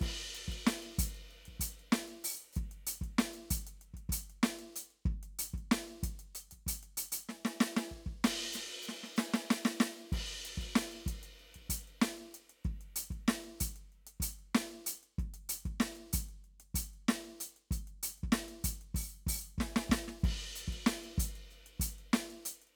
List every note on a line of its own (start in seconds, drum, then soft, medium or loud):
0.01 kick medium
0.01 crash loud
0.19 closed hi-hat soft
0.35 closed hi-hat medium
0.48 kick soft
0.48 closed hi-hat soft
0.67 snare loud
0.82 closed hi-hat soft
0.99 closed hi-hat loud
0.99 kick medium
1.14 closed hi-hat soft
1.31 closed hi-hat soft
1.45 kick soft
1.45 closed hi-hat soft
1.60 closed hi-hat loud
1.60 kick soft
1.79 closed hi-hat soft
1.92 snare loud
2.08 closed hi-hat soft
2.24 open hi-hat loud
2.40 open hi-hat soft
2.53 kick medium
2.53 closed hi-hat medium
2.53 hi-hat pedal medium
2.71 closed hi-hat soft
2.87 closed hi-hat loud
3.01 kick soft
3.01 closed hi-hat soft
3.18 snare loud
3.33 closed hi-hat medium
3.51 closed hi-hat loud
3.51 kick medium
3.67 closed hi-hat medium
3.81 closed hi-hat soft
3.94 kick soft
3.94 closed hi-hat soft
4.09 closed hi-hat loud
4.09 kick medium
4.30 closed hi-hat soft
4.43 snare loud
4.59 closed hi-hat soft
4.76 closed hi-hat loud
4.90 closed hi-hat soft
5.06 kick medium
5.23 open hi-hat soft
5.39 closed hi-hat loud
5.54 kick soft
5.58 closed hi-hat soft
5.71 snare loud
5.87 closed hi-hat soft
6.03 kick medium
6.03 closed hi-hat loud
6.19 open hi-hat medium
6.35 closed hi-hat medium
6.51 kick soft
6.51 closed hi-hat medium
6.67 closed hi-hat loud
6.67 kick soft
6.83 closed hi-hat soft
6.97 closed hi-hat loud
7.12 closed hi-hat loud
7.29 snare medium
7.45 snare medium
7.60 snare loud
7.77 snare loud
7.91 kick soft
8.06 kick soft
8.24 snare loud
8.24 crash loud
8.53 snare soft
8.53 hi-hat pedal loud
8.82 hi-hat pedal medium
8.89 snare medium
9.03 snare soft
9.16 snare loud
9.16 hi-hat pedal medium
9.34 snare loud
9.50 snare loud
9.65 snare loud
9.71 hi-hat pedal soft
9.80 snare loud
10.12 kick medium
10.12 crash loud
10.27 closed hi-hat soft
10.45 closed hi-hat medium
10.58 kick soft
10.58 closed hi-hat soft
10.76 snare loud
10.92 closed hi-hat soft
11.06 kick medium
11.06 closed hi-hat medium
11.23 closed hi-hat medium
11.39 closed hi-hat soft
11.54 kick soft
11.54 closed hi-hat soft
11.70 closed hi-hat loud
11.70 kick soft
11.87 closed hi-hat soft
12.02 snare loud
12.17 closed hi-hat soft
12.34 closed hi-hat medium
12.49 closed hi-hat soft
12.65 kick medium
12.65 closed hi-hat soft
12.81 closed hi-hat soft
12.96 closed hi-hat loud
13.11 kick soft
13.11 closed hi-hat soft
13.28 snare loud
13.42 closed hi-hat soft
13.60 closed hi-hat loud
13.60 kick medium
13.76 closed hi-hat soft
13.92 closed hi-hat soft
14.07 closed hi-hat medium
14.20 closed hi-hat loud
14.20 kick soft
14.39 closed hi-hat soft
14.55 snare loud
14.69 closed hi-hat soft
14.86 closed hi-hat loud
15.03 closed hi-hat soft
15.18 kick medium
15.18 closed hi-hat soft
15.34 closed hi-hat medium
15.49 closed hi-hat loud
15.65 kick soft
15.65 closed hi-hat soft
15.80 snare loud
15.95 closed hi-hat soft
16.13 closed hi-hat loud
16.13 kick medium
16.29 closed hi-hat soft
16.44 open hi-hat soft
16.60 closed hi-hat soft
16.74 closed hi-hat loud
16.74 kick medium
16.93 closed hi-hat soft
17.08 snare loud
17.24 closed hi-hat soft
17.40 closed hi-hat loud
17.56 closed hi-hat soft
17.71 closed hi-hat medium
17.71 kick medium
17.87 closed hi-hat soft
18.03 closed hi-hat loud
18.18 closed hi-hat soft
18.23 kick soft
18.32 snare loud
18.48 closed hi-hat soft
18.64 closed hi-hat loud
18.64 kick medium
18.81 closed hi-hat soft
18.94 open hi-hat loud
18.94 kick medium
19.16 open hi-hat soft
19.27 open hi-hat loud
19.27 kick medium
19.58 kick soft
19.58 snare medium
19.58 hi-hat pedal soft
19.76 snare loud
19.89 kick soft
19.89 snare loud
20.08 snare soft
20.19 hi-hat pedal soft
20.24 kick medium
20.24 crash medium
20.40 closed hi-hat soft
20.56 closed hi-hat medium
20.68 kick soft
20.72 closed hi-hat soft
20.86 snare loud
21.04 closed hi-hat soft
21.18 closed hi-hat loud
21.18 kick medium
21.35 closed hi-hat soft
21.50 closed hi-hat soft
21.66 closed hi-hat soft
21.80 closed hi-hat loud
21.80 kick medium
21.98 closed hi-hat soft
22.13 snare loud
22.30 closed hi-hat soft
22.45 closed hi-hat loud
22.62 closed hi-hat soft
22.67 closed hi-hat soft